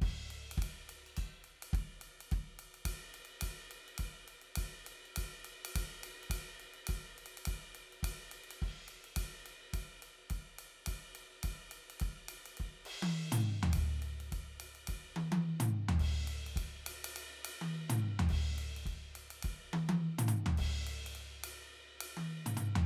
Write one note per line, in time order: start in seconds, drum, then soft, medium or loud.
0.01 kick medium
0.01 ride medium
0.30 ride medium
0.51 ride medium
0.57 kick medium
0.62 ride medium
0.89 ride medium
1.06 ride bell soft
1.17 kick medium
1.17 ride bell medium
1.44 ride medium
1.62 ride medium
1.73 kick medium
1.73 ride medium
2.01 ride medium
2.20 ride medium
2.31 kick medium
2.31 ride medium
2.59 ride medium
2.74 ride medium
2.85 kick medium
2.85 ride loud
3.14 ride medium
3.25 ride medium
3.41 kick soft
3.41 ride loud
3.71 ride medium
3.88 ride soft
3.98 kick soft
3.98 ride loud
4.28 ride medium
4.41 ride soft
4.55 kick medium
4.55 ride loud
4.86 ride medium
5.05 ride soft
5.16 kick soft
5.16 ride loud
5.44 ride medium
5.65 ride loud
5.75 kick medium
5.75 ride loud
6.03 ride medium
6.23 ride soft
6.30 kick medium
6.30 ride loud
6.60 ride medium
6.74 ride soft
6.87 kick medium
6.87 ride loud
7.18 ride medium
7.26 ride medium
7.37 ride medium
7.45 kick medium
7.45 ride loud
7.75 ride medium
7.92 ride soft
8.03 kick medium
8.03 ride loud
8.31 ride medium
8.44 ride soft
8.51 ride medium
8.62 kick medium
8.62 ride medium
8.88 ride medium
9.04 ride medium
9.16 kick medium
9.16 ride loud
9.46 ride medium
9.73 kick medium
9.73 ride loud
10.02 ride medium
10.30 kick medium
10.30 ride medium
10.58 ride medium
10.86 kick soft
10.86 ride loud
11.15 ride medium
11.43 kick medium
11.43 ride loud
11.71 ride medium
11.90 ride medium
12.01 kick medium
12.28 ride loud
12.46 ride medium
12.57 kick soft
12.57 ride medium
12.85 ride medium
13.02 high tom loud
13.32 mid tom loud
13.63 floor tom loud
13.73 kick medium
13.73 ride loud
14.02 ride medium
14.20 ride medium
14.32 kick soft
14.32 ride medium
14.60 ride medium
14.75 ride soft
14.87 kick soft
14.87 ride loud
15.16 high tom medium
15.32 high tom loud
15.60 mid tom loud
15.88 floor tom loud
15.99 kick soft
15.99 ride medium
16.27 ride medium
16.46 ride medium
16.56 kick medium
16.56 ride medium
16.86 ride loud
17.04 ride loud
17.16 ride loud
17.45 ride loud
17.61 high tom medium
17.89 mid tom loud
18.19 floor tom loud
18.29 kick medium
18.29 ride medium
18.58 ride medium
18.76 ride medium
18.85 kick soft
18.85 ride medium
19.15 ride medium
19.30 ride medium
19.43 kick medium
19.43 ride loud
19.73 high tom loud
19.89 high tom loud
20.18 mid tom loud
20.28 mid tom loud
20.46 floor tom loud
20.57 kick soft
20.57 ride medium
20.87 ride medium
21.06 ride medium
21.15 ride medium
21.44 ride loud
22.00 ride loud
22.17 high tom medium
22.46 mid tom loud
22.57 mid tom medium
22.75 floor tom loud